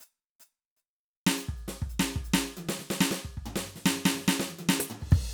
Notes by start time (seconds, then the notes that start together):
0.00 hi-hat pedal
0.40 hi-hat pedal
0.50 closed hi-hat
0.76 hi-hat pedal
1.27 snare
1.36 closed hi-hat
1.48 kick
1.56 closed hi-hat
1.68 snare
1.82 kick
1.89 closed hi-hat
1.99 snare
2.16 kick
2.24 closed hi-hat
2.33 snare
2.46 closed hi-hat
2.57 high tom
2.69 snare
2.79 snare
2.90 snare
3.01 snare
3.11 snare
3.25 kick
3.37 kick
3.46 floor tom
3.56 snare
3.66 snare
3.76 snare
3.86 snare
3.96 snare
4.05 snare
4.15 snare
4.20 snare
4.24 snare
4.28 snare
4.40 snare
4.48 high tom
4.58 high tom
4.69 snare
4.80 high tom
4.90 floor tom
5.00 kick, crash
5.11 kick, crash